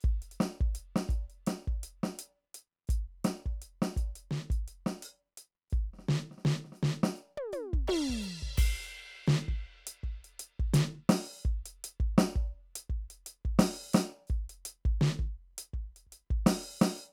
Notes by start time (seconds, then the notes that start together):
0.01 kick, hi-hat pedal
0.22 closed hi-hat
0.31 closed hi-hat
0.40 snare
0.61 kick
0.75 closed hi-hat
0.96 snare
1.09 kick, closed hi-hat
1.30 closed hi-hat
1.47 closed hi-hat, snare
1.67 kick
1.83 closed hi-hat
2.03 snare
2.19 open hi-hat
2.54 open hi-hat
2.87 kick, closed hi-hat, hi-hat pedal
3.24 snare, closed hi-hat
3.46 kick
3.62 closed hi-hat
3.82 snare
3.96 kick, closed hi-hat
4.15 closed hi-hat
4.31 snare
4.50 kick, closed hi-hat
4.68 closed hi-hat
4.86 snare
5.02 open hi-hat
5.37 open hi-hat
5.70 kick, hi-hat pedal
5.93 snare
5.99 snare
6.09 snare
6.31 snare
6.38 snare
6.45 snare
6.64 snare
6.72 snare, hi-hat pedal
6.83 snare
7.03 snare
7.15 hi-hat pedal
7.37 high tom
7.53 hi-hat pedal, high tom
7.73 kick
7.87 floor tom, crash
8.09 kick
8.22 hi-hat pedal
8.42 kick
8.57 open hi-hat, kick, ride
9.27 snare, hi-hat pedal
9.48 kick
9.87 closed hi-hat
10.03 kick
10.24 closed hi-hat
10.39 closed hi-hat
10.60 kick
10.74 open hi-hat, snare
11.09 open hi-hat, snare
11.41 hi-hat pedal
11.45 kick
11.66 closed hi-hat
11.84 closed hi-hat
12.00 kick
12.18 snare
12.36 kick
12.75 closed hi-hat
12.90 kick
13.10 closed hi-hat
13.26 closed hi-hat
13.45 kick
13.59 open hi-hat, snare
13.93 open hi-hat, snare
14.27 kick, hi-hat pedal
14.49 closed hi-hat
14.65 closed hi-hat
14.85 kick
15.01 snare
15.19 kick
15.58 closed hi-hat
15.74 kick
15.96 closed hi-hat
16.07 kick
16.12 closed hi-hat
16.30 kick
16.46 open hi-hat, snare
16.81 open hi-hat, snare